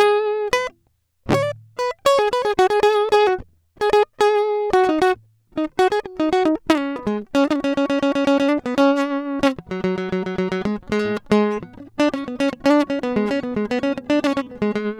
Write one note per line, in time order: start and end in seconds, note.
0.01 0.52 G#4
0.54 0.71 B4
1.30 1.75 A2
1.30 1.48 D3
1.35 1.55 D5
1.80 1.96 B4
2.07 2.24 C#5
2.20 2.34 G#4
2.34 2.51 B4
2.46 2.56 G#4
2.60 2.69 F#4
2.72 2.85 G#4
2.85 3.11 G#4
3.14 3.28 G#4
3.28 3.41 F#4
3.82 3.92 G#4
3.95 4.08 G#4
4.22 4.73 G#4
4.75 4.94 F#4
4.91 5.04 D#4
5.03 5.18 F#4
5.59 5.71 D#4
5.80 5.90 F#4
5.93 6.03 G#4
6.07 6.29 F#4
6.21 6.35 D#4
6.34 6.55 F#4
6.47 6.61 D#4
6.71 6.97 C#4
6.97 7.11 B3
7.08 7.29 G#3
7.36 7.49 C#4
7.52 7.60 D4
7.65 7.76 C#4
7.79 7.88 C#4
7.91 8.01 C#4
8.04 8.17 C#4
8.17 8.29 C#4
8.29 8.40 C#4
8.42 8.50 C#4
8.51 8.62 D4
8.67 8.77 B3
8.79 9.44 C#4
9.44 9.58 C#4
9.72 9.83 F#3
9.86 9.98 F#3
10.00 10.12 F#3
10.14 10.26 F#3
10.28 10.40 F#3
10.40 10.53 F#3
10.53 10.65 F#3
10.67 10.80 G#3
10.93 11.21 G#3
11.33 11.61 G#3
12.01 12.12 D4
12.15 12.27 C#4
12.29 12.38 B3
12.41 12.52 C#4
12.67 12.86 D4
12.91 13.02 C#4
13.04 13.28 B3
13.32 13.42 C#4
13.45 13.60 B3
13.72 13.82 B3
13.85 13.96 C#4
14.11 14.22 D4
14.25 14.35 C#4
14.63 14.75 G#3
14.77 14.94 G#3